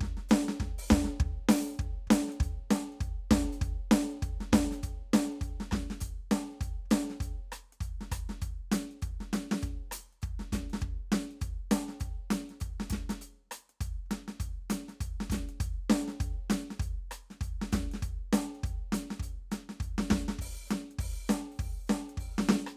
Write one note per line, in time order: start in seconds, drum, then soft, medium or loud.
0.01 kick medium
0.01 snare soft
0.17 snare soft
0.29 snare loud
0.29 hi-hat pedal medium
0.49 snare medium
0.60 kick medium
0.60 snare soft
0.79 open hi-hat loud
0.89 kick loud
0.89 snare loud
0.89 hi-hat pedal medium
1.05 snare soft
1.20 kick loud
1.20 closed hi-hat soft
1.49 open hi-hat loud
1.49 snare loud
1.75 hi-hat pedal soft
1.79 kick medium
1.79 closed hi-hat soft
2.07 kick soft
2.07 snare loud
2.12 closed hi-hat loud
2.28 snare soft
2.32 closed hi-hat soft
2.40 closed hi-hat medium
2.40 kick loud
2.71 closed hi-hat loud
2.71 snare loud
2.92 closed hi-hat soft
3.01 closed hi-hat soft
3.01 kick medium
3.31 closed hi-hat medium
3.31 kick medium
3.31 snare loud
3.53 closed hi-hat soft
3.62 closed hi-hat medium
3.62 kick loud
3.91 closed hi-hat loud
3.91 snare loud
4.11 closed hi-hat soft
4.22 closed hi-hat soft
4.22 kick medium
4.41 snare soft
4.53 closed hi-hat loud
4.53 kick medium
4.53 snare loud
4.71 closed hi-hat soft
4.71 snare soft
4.76 snare soft
4.83 closed hi-hat medium
4.83 kick medium
5.14 closed hi-hat medium
5.14 snare loud
5.32 closed hi-hat soft
5.41 closed hi-hat medium
5.41 kick medium
5.60 snare medium
5.71 kick medium
5.71 cross-stick medium
5.71 snare medium
5.90 snare medium
6.01 closed hi-hat medium
6.01 kick medium
6.31 closed hi-hat medium
6.31 snare loud
6.51 snare soft
6.51 closed hi-hat soft
6.61 closed hi-hat medium
6.61 kick medium
6.86 kick soft
6.91 closed hi-hat loud
6.91 snare loud
7.10 snare soft
7.10 closed hi-hat soft
7.15 snare soft
7.21 closed hi-hat medium
7.21 kick medium
7.52 closed hi-hat medium
7.52 cross-stick medium
7.73 closed hi-hat soft
7.81 closed hi-hat medium
7.81 kick medium
8.01 snare soft
8.12 closed hi-hat loud
8.12 kick medium
8.12 cross-stick medium
8.29 snare soft
8.29 closed hi-hat soft
8.42 closed hi-hat medium
8.42 kick medium
8.72 closed hi-hat loud
8.72 snare loud
8.91 closed hi-hat soft
9.02 closed hi-hat medium
9.02 kick medium
9.21 snare soft
9.33 closed hi-hat medium
9.33 snare medium
9.52 snare medium
9.52 closed hi-hat soft
9.62 closed hi-hat medium
9.62 kick medium
9.92 closed hi-hat loud
9.92 cross-stick medium
10.13 closed hi-hat soft
10.22 closed hi-hat soft
10.22 kick medium
10.39 snare soft
10.53 closed hi-hat medium
10.53 kick medium
10.53 snare medium
10.70 snare medium
10.70 closed hi-hat soft
10.82 kick medium
10.82 closed hi-hat soft
11.12 closed hi-hat medium
11.12 snare loud
11.31 closed hi-hat soft
11.42 closed hi-hat medium
11.42 kick medium
11.71 closed hi-hat loud
11.71 snare loud
11.89 snare soft
11.89 closed hi-hat soft
12.00 closed hi-hat medium
12.00 kick medium
12.31 closed hi-hat medium
12.31 snare loud
12.50 snare soft
12.50 closed hi-hat soft
12.61 closed hi-hat medium
12.61 kick medium
12.80 snare medium
12.90 kick medium
12.90 snare medium
12.90 closed hi-hat loud
13.10 snare medium
13.10 closed hi-hat medium
13.21 closed hi-hat medium
13.51 closed hi-hat medium
13.51 cross-stick medium
13.70 closed hi-hat soft
13.81 closed hi-hat medium
13.81 kick medium
14.06 kick soft
14.11 snare medium
14.11 closed hi-hat medium
14.28 snare medium
14.28 closed hi-hat soft
14.40 closed hi-hat medium
14.40 kick medium
14.62 kick soft
14.70 closed hi-hat loud
14.70 snare medium
14.89 snare soft
14.89 closed hi-hat soft
15.01 closed hi-hat medium
15.01 kick medium
15.21 snare medium
15.30 closed hi-hat medium
15.30 kick medium
15.30 snare medium
15.49 closed hi-hat soft
15.60 closed hi-hat medium
15.60 kick medium
15.90 closed hi-hat medium
15.90 snare loud
16.08 snare soft
16.08 closed hi-hat soft
16.20 closed hi-hat medium
16.20 kick medium
16.50 closed hi-hat medium
16.50 snare loud
16.71 snare soft
16.71 closed hi-hat soft
16.80 closed hi-hat medium
16.80 kick medium
17.11 closed hi-hat medium
17.11 cross-stick medium
17.31 snare soft
17.31 closed hi-hat soft
17.41 closed hi-hat medium
17.41 kick medium
17.62 snare medium
17.73 closed hi-hat medium
17.73 kick medium
17.73 snare medium
17.92 snare medium
17.92 closed hi-hat soft
18.03 closed hi-hat medium
18.03 kick medium
18.33 closed hi-hat loud
18.33 snare loud
18.55 closed hi-hat soft
18.64 closed hi-hat medium
18.64 kick medium
18.93 closed hi-hat loud
18.93 snare medium
19.11 snare medium
19.11 closed hi-hat soft
19.20 closed hi-hat medium
19.20 kick medium
19.52 closed hi-hat medium
19.52 snare medium
19.69 snare soft
19.69 closed hi-hat soft
19.80 closed hi-hat medium
19.80 kick medium
19.98 snare medium
20.11 kick medium
20.11 snare loud
20.28 snare medium
20.39 open hi-hat loud
20.39 kick medium
20.67 hi-hat pedal medium
20.71 snare medium
20.71 closed hi-hat medium
20.91 closed hi-hat soft
20.99 open hi-hat medium
20.99 kick medium
21.27 closed hi-hat medium
21.27 snare medium
21.27 hi-hat pedal soft
21.52 open hi-hat soft
21.59 open hi-hat medium
21.59 kick medium
21.87 closed hi-hat medium
21.87 snare medium
21.87 hi-hat pedal soft
22.10 closed hi-hat soft
22.18 open hi-hat medium
22.18 kick medium
22.38 snare loud
22.46 snare loud
22.46 hi-hat pedal soft
22.67 cross-stick medium